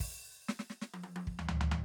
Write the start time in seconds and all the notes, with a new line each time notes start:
0.02 open hi-hat, kick
0.48 snare
0.59 snare
0.70 snare
0.81 snare
0.94 high tom
1.03 high tom
1.16 high tom
1.27 kick
1.39 floor tom
1.49 floor tom
1.61 floor tom
1.71 floor tom